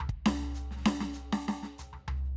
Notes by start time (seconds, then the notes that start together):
0.00 floor tom
0.09 kick
0.26 snare, floor tom
0.41 snare
0.55 hi-hat pedal
0.71 snare
0.76 snare
0.81 snare
0.86 snare
1.01 snare
1.13 snare, hi-hat pedal
1.32 snare
1.48 snare
1.63 snare
1.78 floor tom, hi-hat pedal
1.93 floor tom
2.08 floor tom
2.15 snare
2.24 snare